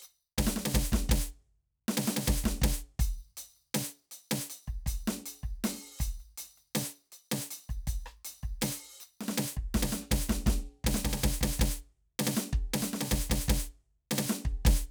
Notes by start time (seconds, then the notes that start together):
0.02 hi-hat pedal
0.38 kick, snare
0.47 snare
0.56 snare
0.65 snare
0.74 kick, snare
0.92 kick, snare
1.09 kick, snare
1.88 snare
1.97 snare
2.07 snare
2.16 snare
2.27 kick, snare
2.44 kick, snare
2.62 kick, snare
2.99 closed hi-hat, kick
3.37 closed hi-hat
3.56 closed hi-hat
3.74 closed hi-hat, snare
4.11 closed hi-hat
4.31 snare
4.50 closed hi-hat
4.67 kick, closed hi-hat
4.86 closed hi-hat, kick
5.07 snare
5.26 closed hi-hat
5.43 kick, closed hi-hat
5.64 snare, percussion
5.99 closed hi-hat, kick, hi-hat pedal
6.20 closed hi-hat
6.38 closed hi-hat
6.57 closed hi-hat
6.75 closed hi-hat, snare
6.94 closed hi-hat
7.12 closed hi-hat
7.31 snare
7.50 closed hi-hat
7.69 kick, closed hi-hat
7.87 closed hi-hat, kick
8.06 cross-stick
8.25 closed hi-hat
8.43 kick, closed hi-hat
8.61 snare, percussion
9.00 hi-hat pedal
9.21 snare
9.28 snare
9.35 snare, hi-hat pedal
9.57 kick
9.74 kick, snare
9.82 snare
9.92 snare
10.01 snare
10.11 kick, snare
10.29 kick, snare
10.46 kick, snare
10.84 kick, snare
10.94 snare
11.04 kick, snare
11.13 snare
11.23 kick, snare
11.41 kick, snare
11.59 kick, snare
12.19 snare
12.27 snare
12.37 snare
12.53 kick
12.73 snare
12.79 kick, snare
12.93 snare
13.01 snare
13.11 kick, snare
13.30 kick, snare
13.48 kick, snare
14.11 snare
14.18 snare
14.29 snare
14.45 kick
14.65 kick, snare